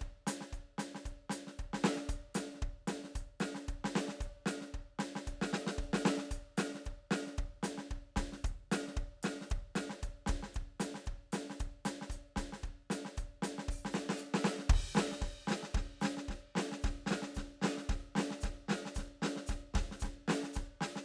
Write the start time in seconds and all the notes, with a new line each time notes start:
0.01 kick, closed hi-hat
0.27 closed hi-hat, snare
0.41 snare
0.53 kick, closed hi-hat
0.78 closed hi-hat, snare
0.95 snare
1.05 kick, closed hi-hat
1.29 closed hi-hat, snare
1.47 snare
1.59 kick, closed hi-hat
1.73 snare
1.84 snare
1.96 snare
2.09 closed hi-hat, kick
2.35 closed hi-hat, snare
2.54 snare
2.62 kick, closed hi-hat
2.87 snare, closed hi-hat
3.04 snare
3.15 closed hi-hat, kick
3.40 snare, closed hi-hat
3.55 snare
3.68 kick, closed hi-hat
3.84 snare
3.95 snare
4.08 snare
4.20 kick, closed hi-hat
4.46 closed hi-hat, snare
4.61 snare
4.74 kick, closed hi-hat
4.99 snare, closed hi-hat
5.15 snare
5.27 kick, closed hi-hat
5.41 snare
5.53 snare
5.67 snare
5.78 kick
5.93 snare
6.05 snare
6.18 snare
6.31 closed hi-hat, kick
6.57 closed hi-hat, snare
6.74 snare
6.86 kick, closed hi-hat
7.11 snare, closed hi-hat
7.27 snare
7.38 kick, closed hi-hat
7.63 closed hi-hat, snare
7.78 snare
7.91 kick, closed hi-hat
8.16 kick, snare, closed hi-hat
8.32 snare
8.44 kick, closed hi-hat
8.71 closed hi-hat, snare
8.87 snare
8.97 kick, closed hi-hat
9.23 snare, closed hi-hat
9.41 snare
9.50 kick, closed hi-hat
9.75 snare, closed hi-hat
9.89 snare
10.03 kick, closed hi-hat
10.26 kick, snare, closed hi-hat
10.43 snare
10.54 kick, closed hi-hat
10.80 closed hi-hat, snare
10.94 snare
11.06 kick, closed hi-hat
11.32 closed hi-hat, snare
11.50 snare
11.60 kick, closed hi-hat
11.85 closed hi-hat, snare
12.01 snare
12.10 closed hi-hat, kick
12.36 closed hi-hat, kick, snare
12.52 snare
12.63 kick, closed hi-hat
12.90 closed hi-hat, snare
13.05 snare
13.17 closed hi-hat, kick
13.42 closed hi-hat, snare
13.58 snare
13.68 open hi-hat, kick
13.85 snare
13.92 snare, hi-hat pedal
14.09 snare
14.17 hi-hat pedal
14.34 snare
14.44 snare
14.59 snare
14.69 kick, crash
14.95 snare
14.97 snare
15.12 snare
15.21 kick, snare
15.47 snare
15.51 snare
15.63 snare
15.74 kick, snare
16.01 snare, hi-hat pedal
16.04 snare
16.17 snare
16.28 kick, snare
16.55 snare
16.57 snare
16.72 snare
16.82 kick, snare, hi-hat pedal
17.06 snare
17.11 snare
17.22 snare
17.35 kick, snare, hi-hat pedal
17.62 snare
17.64 snare
17.77 snare
17.89 kick, snare
18.15 snare
18.18 snare
18.30 snare
18.41 kick, snare, hi-hat pedal
18.68 snare
18.70 snare
18.85 snare
18.95 kick, snare, hi-hat pedal
19.22 snare
19.24 snare
19.36 snare
19.46 kick, snare, hi-hat pedal
19.74 kick, snare
19.75 snare
19.91 snare
20.00 kick, snare, hi-hat pedal
20.28 snare
20.30 snare
20.43 snare
20.53 kick, snare, hi-hat pedal
20.81 snare
20.96 snare